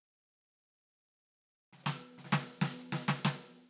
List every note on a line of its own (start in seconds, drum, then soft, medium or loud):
1.73 snare soft
1.78 snare soft
1.83 snare loud
1.83 hi-hat pedal medium
2.18 snare soft
2.24 snare soft
2.30 snare loud
2.30 hi-hat pedal medium
2.61 snare loud
2.78 hi-hat pedal medium
2.92 snare loud
3.08 snare loud
3.25 snare loud
3.25 hi-hat pedal medium